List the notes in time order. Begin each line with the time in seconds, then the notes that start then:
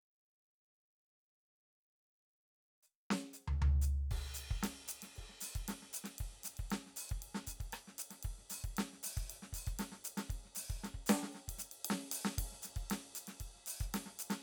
2.82 hi-hat pedal
3.10 snare
3.33 hi-hat pedal
3.47 floor tom
3.62 floor tom
3.81 hi-hat pedal
4.11 kick, crash, ride
4.34 hi-hat pedal
4.38 ride
4.50 kick
4.62 snare, ride
4.80 snare
4.88 hi-hat pedal, ride
5.02 snare, ride
5.15 kick, ride
5.29 snare
5.40 snare, hi-hat pedal, ride
5.55 kick, ride
5.68 snare, ride
5.82 snare
5.93 hi-hat pedal, ride
6.04 snare, ride
6.18 kick, ride
6.32 snare
6.43 snare, hi-hat pedal, ride
6.57 kick, ride
6.70 snare, ride
6.86 snare
6.96 hi-hat pedal, ride
7.09 kick, ride
7.22 ride
7.34 snare
7.47 kick, hi-hat pedal, ride
7.60 kick, ride
7.72 cross-stick, ride
7.87 snare
7.98 hi-hat pedal, ride
8.10 snare, ride
8.23 kick, ride
8.38 snare
8.50 snare, hi-hat pedal, ride
8.64 kick, ride
8.77 snare, ride
8.93 snare
9.03 snare, hi-hat pedal, ride
9.17 kick, ride
9.30 ride
9.42 snare
9.52 kick, hi-hat pedal, ride
9.66 kick, ride
9.79 snare, ride
9.92 snare
10.04 hi-hat pedal, ride
10.17 snare, ride
10.28 kick, hi-hat pedal, ride
10.45 snare
10.55 snare, hi-hat pedal, ride
10.69 kick, ride
10.83 snare, ride
10.94 kick
11.06 snare, hi-hat pedal, ride
11.23 snare
11.32 snare, hi-hat pedal
11.48 kick, ride
11.58 snare, hi-hat pedal
11.71 ride
11.83 hi-hat pedal, ride
11.90 snare
12.11 hi-hat pedal, ride
12.25 snare
12.38 kick, ride
12.52 snare
12.62 snare, hi-hat pedal, ride
12.76 kick, ride
12.90 snare, ride
13.02 snare
13.15 hi-hat pedal, ride
13.27 snare, ride
13.40 kick, ride
13.55 snare
13.66 snare, hi-hat pedal, ride
13.80 kick, ride
13.94 snare, ride
14.06 snare
14.19 hi-hat pedal, ride
14.30 snare, ride